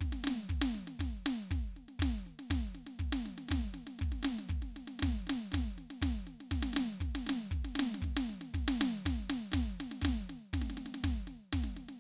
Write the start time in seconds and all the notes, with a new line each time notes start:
0.01 kick, snare
0.13 snare
0.24 snare
0.28 snare
0.49 kick, snare
0.62 snare
0.75 snare
0.88 snare
1.00 kick, snare
1.26 snare
1.51 kick, snare
1.77 snare
1.89 snare
2.00 kick, snare
2.27 snare
2.39 snare
2.51 kick, snare
2.75 snare
2.87 snare
2.99 kick, snare
3.13 snare
3.26 snare
3.38 snare
3.49 kick, snare
3.52 snare
3.74 snare
3.87 snare
3.99 kick, snare
4.12 snare
4.23 snare
4.25 snare
4.39 snare
4.49 kick, snare
4.62 snare
4.77 snare
4.88 snare
5.00 kick, snare
5.03 snare
5.27 snare
5.30 snare
5.52 kick, snare
5.55 snare
5.78 snare
5.91 snare
6.02 kick, snare
6.27 snare
6.41 snare
6.52 kick, snare
6.63 snare
6.74 snare
6.77 snare
7.01 kick, snare
7.15 snare
7.27 snare
7.30 snare
7.51 kick, snare
7.65 snare
7.76 snare
7.80 snare
7.95 snare
8.02 kick, snare
8.17 snare
8.30 snare
8.41 snare
8.54 kick, snare
8.68 snare
8.81 snare
9.06 kick, snare
9.19 snare
9.30 snare
9.52 snare
9.54 kick, snare
9.80 snare
9.92 snare
10.03 kick, snare
10.30 snare
10.53 kick, snare
10.62 snare
10.70 snare
10.78 snare
10.86 snare
10.95 snare
11.04 kick, snare
11.28 snare
11.53 kick, snare
11.64 snare
11.77 snare
11.89 snare